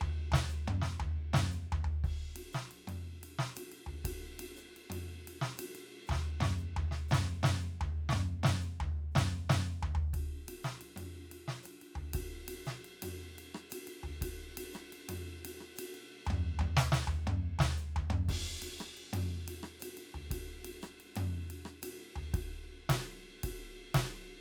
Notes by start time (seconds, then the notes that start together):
0.01 floor tom
0.32 snare, floor tom
0.49 hi-hat pedal
0.68 mid tom
0.82 snare
1.00 floor tom
1.33 snare, mid tom
1.51 hi-hat pedal
1.72 floor tom
1.84 floor tom
2.04 kick, ride
2.36 ride
2.53 snare, hi-hat pedal
2.71 ride
2.87 mid tom, ride
3.23 ride
3.39 snare
3.55 hi-hat pedal, ride
3.72 ride
3.86 floor tom
4.04 kick, ride
4.39 ride
4.56 hi-hat pedal
4.76 ride
4.90 mid tom, ride
5.27 ride
5.41 snare
5.57 hi-hat pedal, ride
5.75 ride
6.07 floor tom, hi-hat pedal
6.11 snare
6.40 snare, mid tom
6.58 hi-hat pedal
6.76 floor tom
6.91 snare
7.08 snare, hi-hat pedal, mid tom
7.43 snare, mid tom
7.60 hi-hat pedal
7.81 floor tom
8.09 snare, hi-hat pedal, mid tom
8.43 snare, mid tom
8.61 hi-hat pedal
8.80 floor tom
9.11 hi-hat pedal, mid tom
9.16 snare
9.49 snare, mid tom
9.64 hi-hat pedal
9.83 floor tom
9.95 floor tom
10.13 kick, ride
10.42 ride
10.48 ride
10.63 snare, hi-hat pedal
10.81 ride
10.96 mid tom, ride
11.31 ride
11.48 snare
11.63 hi-hat pedal, ride
11.81 ride
11.94 kick, floor tom
12.13 kick, ride
12.48 ride
12.65 snare, hi-hat pedal
12.85 ride
13.02 mid tom, ride
13.38 ride
13.54 cross-stick
13.70 hi-hat pedal, ride
13.87 ride
14.03 floor tom
14.21 kick, ride
14.57 ride
14.73 cross-stick, hi-hat pedal
14.92 ride
15.09 mid tom, ride
15.45 ride
15.60 cross-stick
15.76 hi-hat pedal, ride
15.94 ride
16.25 floor tom, hi-hat pedal
16.30 mid tom
16.59 floor tom, mid tom
16.76 snare, hi-hat pedal
16.92 snare
17.07 floor tom
17.26 hi-hat pedal, mid tom
17.59 snare, floor tom
17.77 hi-hat pedal
17.96 floor tom
18.10 mid tom
18.28 kick, ride
18.62 ride
18.78 cross-stick, hi-hat pedal
18.97 ride
19.13 mid tom, ride
19.48 ride
19.63 cross-stick
19.79 hi-hat pedal, ride
19.97 ride
20.14 floor tom
20.31 kick, ride
20.65 ride
20.82 cross-stick, hi-hat pedal
21.00 ride
21.16 mid tom, ride
21.31 hi-hat pedal
21.50 ride
21.65 cross-stick
21.82 hi-hat pedal, ride
22.16 floor tom
22.34 kick, ride
22.89 kick, snare, ride
23.43 kick, ride
23.94 kick, snare, ride